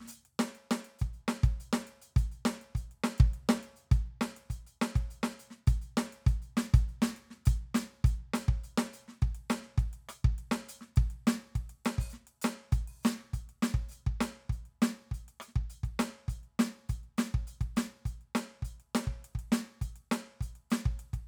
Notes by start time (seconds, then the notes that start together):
0.01 snare
0.04 snare
0.08 snare, hi-hat pedal
0.12 closed hi-hat
0.25 closed hi-hat
0.39 snare
0.47 snare
0.55 closed hi-hat
0.71 snare
0.84 snare, closed hi-hat
0.99 closed hi-hat, kick
1.13 closed hi-hat
1.28 snare
1.44 kick, closed hi-hat
1.60 closed hi-hat
1.73 snare
1.87 closed hi-hat
2.02 closed hi-hat
2.16 closed hi-hat, kick
2.32 closed hi-hat
2.45 snare
2.53 snare
2.62 closed hi-hat
2.75 closed hi-hat, kick
2.91 closed hi-hat
3.04 snare
3.18 kick, closed hi-hat
3.34 closed hi-hat
3.49 snare
3.63 closed hi-hat
3.76 closed hi-hat
3.92 closed hi-hat, kick
4.06 closed hi-hat
4.21 snare
4.30 snare
4.37 closed hi-hat
4.50 closed hi-hat, kick
4.67 closed hi-hat
4.82 snare
4.96 kick, snare, closed hi-hat
5.11 closed hi-hat
5.23 snare
5.39 closed hi-hat
5.51 snare
5.67 closed hi-hat, kick
5.82 closed hi-hat
5.97 snare
6.13 closed hi-hat
6.27 closed hi-hat, kick
6.42 closed hi-hat
6.57 snare
6.74 closed hi-hat, kick
6.88 closed hi-hat
7.02 snare
7.10 snare
7.17 closed hi-hat
7.31 snare
7.34 snare
7.46 closed hi-hat, kick
7.75 closed hi-hat, snare
8.04 closed hi-hat, kick
8.34 closed hi-hat, snare
8.48 kick
8.64 closed hi-hat
8.78 snare
8.94 closed hi-hat
9.08 snare
9.12 snare
9.22 kick, closed hi-hat
9.35 closed hi-hat
9.50 closed hi-hat, snare
9.62 snare
9.78 kick, closed hi-hat
9.93 closed hi-hat
10.09 closed hi-hat, cross-stick
10.25 kick
10.38 closed hi-hat
10.51 snare, closed hi-hat
10.66 closed hi-hat, snare
10.81 snare
10.96 kick, closed hi-hat
11.10 closed hi-hat
11.27 closed hi-hat, snare
11.41 snare
11.56 kick, closed hi-hat
11.70 closed hi-hat
11.85 snare, closed hi-hat
11.98 open hi-hat, kick
12.10 snare, hi-hat pedal
12.27 closed hi-hat
12.42 closed hi-hat, snare
12.72 closed hi-hat, kick, snare
12.88 open hi-hat
13.03 closed hi-hat, snare, hi-hat pedal
13.21 cross-stick
13.34 closed hi-hat, kick
13.49 closed hi-hat
13.63 closed hi-hat, snare
13.74 kick
13.89 closed hi-hat, hi-hat pedal
14.07 kick
14.21 closed hi-hat, snare
14.50 closed hi-hat, kick
14.66 closed hi-hat
14.82 closed hi-hat, snare
15.12 closed hi-hat, kick
15.28 closed hi-hat
15.40 closed hi-hat, cross-stick
15.48 snare
15.56 kick
15.70 closed hi-hat
15.84 kick, closed hi-hat
15.99 closed hi-hat, snare
16.08 snare
16.28 closed hi-hat, kick
16.43 closed hi-hat
16.59 closed hi-hat, snare
16.89 closed hi-hat, kick
17.04 closed hi-hat
17.18 closed hi-hat, snare
17.27 snare
17.34 kick
17.47 closed hi-hat
17.61 kick, closed hi-hat
17.77 closed hi-hat, snare
18.06 closed hi-hat, kick
18.21 closed hi-hat
18.35 closed hi-hat, snare
18.62 closed hi-hat, kick
18.80 closed hi-hat
18.95 closed hi-hat, snare
19.03 snare
19.07 kick
19.21 snare, closed hi-hat
19.35 kick, closed hi-hat
19.52 closed hi-hat, snare
19.82 closed hi-hat, kick
19.96 closed hi-hat
20.12 closed hi-hat, snare
20.41 closed hi-hat, kick
20.56 closed hi-hat
20.71 closed hi-hat, snare
20.86 kick
20.99 closed hi-hat
21.13 kick, closed hi-hat